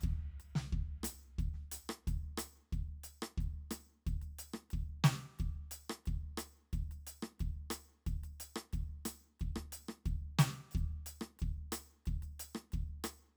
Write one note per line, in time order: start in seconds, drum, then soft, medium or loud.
0.01 kick medium
0.01 percussion soft
0.40 percussion soft
0.55 snare medium
0.72 kick medium
0.72 percussion soft
1.03 cross-stick medium
1.03 percussion loud
1.38 kick medium
1.38 percussion soft
1.54 snare soft
1.72 percussion medium
1.89 cross-stick medium
2.07 kick medium
2.07 percussion medium
2.38 cross-stick medium
2.38 percussion medium
2.72 kick medium
2.72 percussion soft
3.04 percussion medium
3.22 cross-stick medium
3.38 kick medium
3.38 percussion soft
3.71 cross-stick medium
3.71 percussion medium
4.07 kick medium
4.07 percussion soft
4.16 kick soft
4.22 percussion soft
4.39 percussion medium
4.54 cross-stick medium
4.70 kick medium
4.70 percussion soft
5.04 snare medium
5.04 percussion medium
5.39 kick medium
5.39 percussion soft
5.71 percussion medium
5.90 cross-stick medium
6.06 kick medium
6.06 percussion soft
6.37 cross-stick medium
6.37 percussion medium
6.73 kick medium
6.73 percussion soft
6.91 percussion soft
7.07 percussion medium
7.22 cross-stick medium
7.40 kick medium
7.40 percussion soft
7.70 cross-stick medium
7.70 percussion medium
8.07 kick medium
8.07 percussion soft
8.24 percussion soft
8.40 percussion medium
8.56 cross-stick medium
8.73 kick medium
8.73 percussion soft
9.05 cross-stick medium
9.05 percussion loud
9.40 kick soft
9.40 percussion soft
9.56 cross-stick medium
9.72 percussion medium
9.88 cross-stick medium
10.06 kick medium
10.06 percussion soft
10.39 snare medium
10.39 percussion loud
10.71 kick medium
10.71 percussion soft
10.77 percussion soft
11.06 percussion medium
11.21 cross-stick medium
11.39 kick medium
11.39 percussion soft
11.72 cross-stick medium
11.72 percussion loud
12.06 kick medium
12.06 percussion soft
12.22 percussion soft
12.40 percussion medium
12.55 cross-stick medium
12.72 kick medium
12.72 percussion soft
13.04 cross-stick medium
13.04 percussion medium